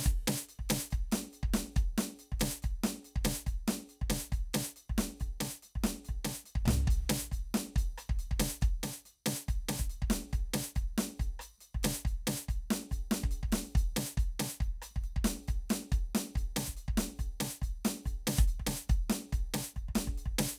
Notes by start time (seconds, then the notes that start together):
0.01 snare
0.06 kick
0.10 crash
0.27 closed hi-hat, snare
0.48 closed hi-hat
0.59 kick
0.69 closed hi-hat, snare
0.90 closed hi-hat, kick, snare
1.12 closed hi-hat, snare
1.31 closed hi-hat, snare
1.43 kick
1.53 closed hi-hat, snare
1.74 closed hi-hat, kick, snare
1.98 closed hi-hat, snare
2.12 snare
2.19 closed hi-hat
2.32 kick
2.40 closed hi-hat, snare
2.62 closed hi-hat, kick, snare
2.83 closed hi-hat, snare
3.03 closed hi-hat, snare
3.16 kick
3.24 closed hi-hat, snare
3.44 closed hi-hat, kick, snare
3.67 closed hi-hat, snare
3.86 closed hi-hat, snare
4.01 kick
4.10 closed hi-hat, snare
4.29 closed hi-hat, kick, snare
4.54 closed hi-hat, snare
4.76 closed hi-hat
4.89 kick
4.98 closed hi-hat, snare
5.17 closed hi-hat, kick, snare
5.40 closed hi-hat, snare
5.62 closed hi-hat, snare
5.75 kick
5.84 closed hi-hat, snare
6.04 closed hi-hat, snare
6.09 kick
6.25 closed hi-hat, snare
6.44 closed hi-hat, snare
6.55 kick
6.65 snare, floor tom
6.87 closed hi-hat, kick
7.09 closed hi-hat, snare
7.31 closed hi-hat, kick, snare
7.54 closed hi-hat, snare
7.76 closed hi-hat, kick, snare
7.98 closed hi-hat, cross-stick
8.09 kick, snare
8.19 closed hi-hat
8.31 kick
8.40 closed hi-hat, snare
8.60 closed hi-hat, kick, snare
8.83 closed hi-hat, snare
9.05 closed hi-hat, snare
9.26 closed hi-hat, snare
9.46 closed hi-hat, kick, snare
9.69 closed hi-hat, snare
9.79 kick, snare
9.89 closed hi-hat
10.02 kick
10.10 closed hi-hat, snare
10.30 closed hi-hat, kick, snare
10.53 closed hi-hat, snare
10.72 closed hi-hat, kick, snare
10.98 closed hi-hat, snare
11.11 snare
11.19 closed hi-hat, kick
11.39 closed hi-hat, cross-stick
11.58 closed hi-hat, snare
11.74 kick
11.83 closed hi-hat, snare
12.05 closed hi-hat, kick
12.27 closed hi-hat, snare
12.48 closed hi-hat, kick
12.70 closed hi-hat, snare
12.79 snare
12.83 snare
12.91 closed hi-hat, kick
13.11 closed hi-hat, snare
13.23 kick
13.31 closed hi-hat
13.43 kick
13.52 snare, percussion
13.66 snare
13.75 closed hi-hat, kick
13.96 closed hi-hat, snare
14.17 closed hi-hat, kick
14.39 closed hi-hat, snare
14.48 snare
14.53 snare
14.60 kick, closed hi-hat
14.82 closed hi-hat, cross-stick
14.90 snare
14.94 kick, snare
14.96 snare
15.04 closed hi-hat
15.16 kick
15.24 closed hi-hat, snare
15.46 closed hi-hat, kick, snare
15.70 closed hi-hat, snare
15.91 closed hi-hat, kick, snare
16.15 closed hi-hat, snare
16.35 closed hi-hat, kick
16.56 closed hi-hat, snare
16.67 kick, snare
16.77 closed hi-hat
16.88 kick
16.97 closed hi-hat, snare
17.19 closed hi-hat, kick
17.40 closed hi-hat, snare
17.61 closed hi-hat, kick, snare
17.85 closed hi-hat, snare
18.04 closed hi-hat, kick, snare
18.27 closed hi-hat, snare
18.38 kick, snare
18.47 closed hi-hat
18.59 kick
18.67 closed hi-hat, snare
18.86 closed hi-hat, kick, snare
19.10 closed hi-hat, snare
19.29 closed hi-hat, kick, snare
19.54 closed hi-hat, snare
19.73 kick, snare, closed hi-hat
19.88 kick
19.95 closed hi-hat, snare
20.07 kick, snare
20.17 closed hi-hat
20.26 kick
20.38 snare, percussion